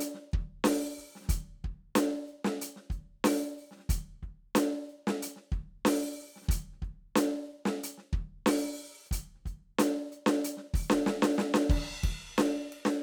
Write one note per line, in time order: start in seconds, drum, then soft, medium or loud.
0.01 closed hi-hat loud
0.15 snare soft
0.32 kick medium
0.32 closed hi-hat soft
0.65 open hi-hat loud
0.65 snare loud
0.72 snare soft
0.98 open hi-hat soft
0.98 kick soft
1.16 snare soft
1.21 snare soft
1.24 snare soft
1.24 hi-hat pedal soft
1.27 closed hi-hat loud
1.27 kick medium
1.27 snare soft
1.65 kick medium
1.65 closed hi-hat soft
1.96 closed hi-hat loud
1.96 snare loud
2.10 snare soft
2.28 closed hi-hat soft
2.45 snare loud
2.62 closed hi-hat loud
2.77 snare soft
2.90 closed hi-hat soft
2.90 kick medium
3.25 open hi-hat loud
3.25 snare loud
3.32 snare soft
3.58 open hi-hat soft
3.71 snare soft
3.76 snare soft
3.80 snare soft
3.90 closed hi-hat loud
3.90 kick medium
4.23 kick soft
4.23 closed hi-hat soft
4.56 closed hi-hat loud
4.56 snare loud
4.89 closed hi-hat soft
5.08 snare loud
5.23 closed hi-hat loud
5.37 snare soft
5.52 kick medium
5.52 closed hi-hat soft
5.86 open hi-hat loud
5.86 snare loud
6.21 open hi-hat soft
6.36 snare soft
6.42 snare soft
6.42 hi-hat pedal soft
6.45 snare soft
6.48 kick loud
6.48 snare soft
6.49 closed hi-hat loud
6.49 snare soft
6.73 snare soft
6.82 kick medium
6.82 closed hi-hat soft
7.16 closed hi-hat loud
7.16 snare loud
7.66 snare loud
7.84 closed hi-hat loud
7.98 snare soft
8.13 kick medium
8.13 closed hi-hat soft
8.47 open hi-hat loud
8.47 snare loud
8.80 open hi-hat soft
9.07 hi-hat pedal soft
9.12 closed hi-hat loud
9.12 kick medium
9.35 snare soft
9.46 closed hi-hat soft
9.46 kick medium
9.79 closed hi-hat loud
9.79 snare loud
10.13 closed hi-hat soft
10.27 snare loud
10.45 closed hi-hat loud
10.58 snare soft
10.74 open hi-hat medium
10.74 kick medium
10.90 snare loud
11.03 snare loud
11.03 hi-hat pedal soft
11.23 snare loud
11.34 hi-hat pedal medium
11.39 snare loud
11.54 snare loud
11.70 kick loud
11.70 crash loud
11.93 snare soft
12.04 kick medium
12.04 ride loud
12.38 snare loud
12.38 ride medium
12.73 ride medium
12.86 snare loud